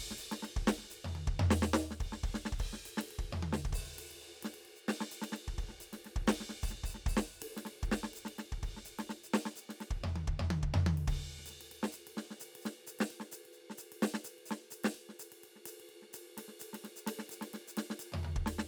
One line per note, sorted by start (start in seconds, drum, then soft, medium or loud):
0.11 snare soft
0.19 hi-hat pedal medium
0.19 ride medium
0.32 snare medium
0.32 ride medium
0.43 snare soft
0.43 ride soft
0.57 kick medium
0.67 snare loud
0.67 ride medium
0.78 snare soft
0.81 snare soft
0.83 snare soft
0.90 hi-hat pedal medium
0.90 ride soft
1.05 floor tom medium
1.15 high tom medium
1.27 kick medium
1.40 floor tom loud
1.51 snare loud
1.62 snare medium
1.74 snare loud
1.91 snare soft
2.00 kick medium
2.00 ride medium
2.12 snare soft
2.24 kick medium
2.24 crash soft
2.34 snare medium
2.46 snare medium
2.52 kick medium
2.59 kick medium
2.59 crash medium
2.73 snare soft
2.86 hi-hat pedal medium
2.86 ride medium
2.98 snare medium
2.98 ride medium
3.11 ride soft
3.19 kick medium
3.33 floor tom medium
3.43 high tom medium
3.53 snare medium
3.65 kick medium
3.73 open hi-hat medium
3.73 kick medium
3.73 ride medium
3.99 ride medium
4.11 ride soft
4.21 ride soft
4.43 snare medium
4.43 ride medium
4.54 ride soft
4.65 ride soft
4.76 hi-hat pedal soft
4.88 snare medium
4.88 ride medium
5.01 snare medium
5.11 hi-hat pedal medium
5.11 ride medium
5.22 snare medium
5.22 ride medium
5.32 snare medium
5.36 ride soft
5.48 kick medium
5.58 kick medium
5.58 ride soft
5.69 snare soft
5.81 hi-hat pedal medium
5.81 ride soft
5.93 snare soft
5.93 ride medium
6.05 snare soft
6.05 ride soft
6.16 kick medium
6.28 snare loud
6.28 ride medium
6.40 snare soft
6.49 snare soft
6.63 open hi-hat medium
6.63 kick medium
6.68 snare soft
6.68 hi-hat pedal medium
6.84 open hi-hat medium
6.84 kick medium
6.90 hi-hat pedal medium
6.95 snare soft
7.06 open hi-hat medium
7.06 kick medium
7.17 snare medium
7.42 ride medium
7.57 snare soft
7.57 ride medium
7.65 snare soft
7.65 ride soft
7.83 kick medium
7.83 hi-hat pedal soft
7.92 snare medium
7.92 ride medium
8.04 snare medium
8.14 hi-hat pedal medium
8.14 ride soft
8.25 snare soft
8.25 ride soft
8.39 snare soft
8.39 ride soft
8.52 kick medium
8.63 kick medium
8.63 ride medium
8.77 snare soft
8.85 hi-hat pedal medium
8.85 ride soft
8.99 snare medium
8.99 ride soft
9.10 snare soft
9.10 ride soft
9.24 hi-hat pedal medium
9.34 snare loud
9.34 ride soft
9.46 snare medium
9.56 hi-hat pedal medium
9.56 ride soft
9.69 snare soft
9.69 ride soft
9.81 snare soft
9.81 ride soft
9.91 kick medium
10.04 floor tom loud
10.16 high tom medium
10.28 kick medium
10.40 floor tom loud
10.51 high tom loud
10.63 kick medium
10.74 floor tom loud
10.87 high tom loud
10.98 ride soft
11.08 kick medium
11.08 ride medium
11.38 snare soft
11.46 snare soft
11.46 hi-hat pedal medium
11.46 ride medium
11.61 hi-hat pedal soft
11.61 ride medium
11.72 ride medium
11.83 snare medium
11.92 hi-hat pedal medium
11.92 ride soft
12.07 ride medium
12.17 snare medium
12.17 ride soft
12.31 snare soft
12.40 hi-hat pedal medium
12.40 ride medium
12.56 ride medium
12.62 hi-hat pedal soft
12.66 snare medium
12.66 ride medium
12.87 hi-hat pedal medium
12.87 ride medium
12.99 snare medium
12.99 ride soft
13.11 ride soft
13.20 snare soft
13.32 hi-hat pedal medium
13.32 ride medium
13.46 ride soft
13.53 hi-hat pedal soft
13.57 ride soft
13.70 snare soft
13.78 hi-hat pedal medium
13.78 ride medium
13.92 ride medium
14.03 snare loud
14.03 ride medium
14.14 snare medium
14.24 hi-hat pedal medium
14.24 ride medium
14.38 ride soft
14.46 hi-hat pedal medium
14.50 snare medium
14.50 ride soft
14.71 hi-hat pedal medium
14.71 ride medium
14.84 snare medium
14.84 ride medium
14.95 ride soft
15.09 snare soft
15.19 hi-hat pedal medium
15.19 ride medium
15.32 ride medium
15.44 ride soft
15.56 snare soft
15.66 hi-hat pedal medium
15.66 ride medium
15.80 ride soft
15.89 ride soft
16.02 snare soft
16.09 snare soft
16.13 hi-hat pedal medium
16.13 ride medium
16.37 snare soft
16.37 ride medium
16.48 snare soft
16.60 hi-hat pedal medium
16.60 ride medium
16.73 snare soft
16.73 ride medium
16.84 snare soft
16.84 ride soft
16.96 hi-hat pedal medium
17.07 snare medium
17.07 ride medium
17.19 snare soft
17.30 hi-hat pedal medium
17.30 ride medium
17.41 snare soft
17.41 ride medium
17.54 snare soft
17.54 ride medium
17.68 hi-hat pedal medium
17.77 snare medium
17.77 ride medium
17.90 snare medium
17.99 hi-hat pedal medium
17.99 ride medium
18.12 floor tom medium
18.12 high tom medium
18.23 floor tom medium
18.23 high tom soft
18.36 kick medium
18.46 snare medium
18.46 ride medium
18.59 snare medium